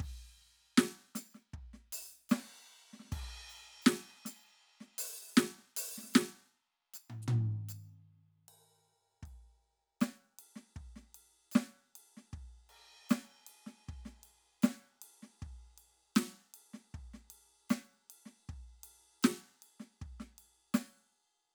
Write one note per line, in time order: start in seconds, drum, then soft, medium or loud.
0.01 kick medium
0.01 crash soft
0.39 percussion soft
0.79 snare loud
1.16 snare medium
1.16 percussion medium
1.35 snare soft
1.53 kick soft
1.53 percussion soft
1.74 snare soft
1.93 percussion loud
2.30 snare loud
2.30 crash medium
2.30 percussion medium
2.94 snare soft
3.00 snare soft
3.05 snare soft
3.10 kick medium
3.10 snare soft
3.10 ride medium
3.14 snare soft
3.50 percussion soft
3.83 percussion soft
3.87 snare loud
4.26 snare soft
4.26 percussion medium
4.81 snare soft
4.88 snare soft
4.99 percussion loud
5.38 snare loud
5.38 percussion medium
5.59 snare soft
5.78 percussion loud
5.98 snare soft
6.04 snare soft
6.09 snare soft
6.13 snare soft
6.13 percussion medium
6.16 snare loud
6.95 percussion medium
7.11 floor tom medium
7.23 floor tom soft
7.29 floor tom loud
7.70 percussion medium
8.49 crash soft
9.24 kick soft
9.24 ride soft
10.02 snare loud
10.02 percussion medium
10.40 ride medium
10.57 snare soft
10.77 kick soft
10.97 snare soft
11.03 snare soft
11.16 ride medium
11.53 snare loud
11.53 percussion medium
11.96 ride medium
12.18 snare soft
12.34 kick soft
12.70 ride soft
13.11 snare loud
13.11 percussion medium
13.48 ride medium
13.67 snare soft
13.90 kick soft
14.06 snare soft
14.24 ride soft
14.63 snare loud
14.63 percussion medium
15.03 ride medium
15.23 snare soft
15.43 kick soft
15.79 ride soft
16.17 snare loud
16.17 percussion medium
16.55 ride medium
16.75 snare soft
16.95 kick soft
17.15 snare soft
17.31 ride medium
17.71 snare loud
17.71 percussion medium
18.11 ride medium
18.27 snare soft
18.50 kick soft
18.84 ride medium
19.24 snare loud
19.24 percussion medium
19.63 ride soft
19.81 snare soft
20.02 kick soft
20.21 snare soft
20.39 ride soft
20.75 snare loud
20.75 ride bell soft
20.75 percussion medium